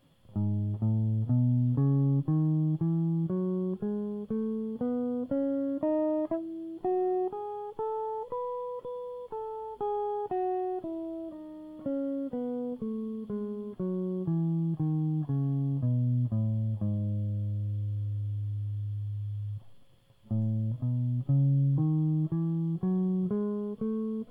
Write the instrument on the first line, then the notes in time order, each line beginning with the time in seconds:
electric guitar
0.39 G#2
0.84 A2
1.31 B2
1.79 C#3
2.29 D#3
2.82 E3
3.31 F#3
3.83 G#3
4.32 A3
4.82 B3
5.32 C#4
5.83 D#4
6.32 E4
6.85 F#4
7.33 G#4
7.79 A4
8.33 B4
8.84 B4
9.33 A4
9.81 G#4
10.32 F#4
10.82 E4
11.30 D#4
11.87 C#4
12.34 B3
12.83 A3
13.31 G#3
13.81 F#3
14.29 E3
14.81 D#3
15.31 C#3
15.85 B2
16.35 A2
16.84 G#2
20.33 A2
20.85 B2
21.31 C#3
21.79 D#3
22.33 E3
22.84 F#3
23.32 G#3
23.82 A3